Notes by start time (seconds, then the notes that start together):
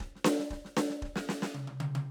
0.00 kick, snare
0.15 snare
0.24 snare
0.39 snare
0.50 kick, snare
0.65 snare
0.77 snare
0.89 snare
1.02 kick, snare
1.16 snare
1.29 snare
1.42 snare
1.54 high tom
1.67 high tom
1.80 high tom
1.95 high tom